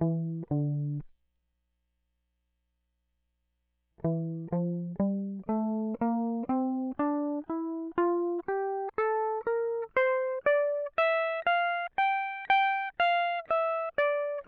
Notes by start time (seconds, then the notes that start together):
0.03 E3
0.53 D3
4.06 E3
4.54 E3
4.59 F3
5.01 G3
5.50 A3
6.02 A#3
6.50 C4
7.00 D4
7.50 E4
7.98 F4
8.49 G4
8.99 A4
9.47 A#4
9.97 C5
10.47 D5
10.99 E5
11.47 F5
11.99 G5
12.51 G5
13.00 F5
13.51 E5
13.99 D5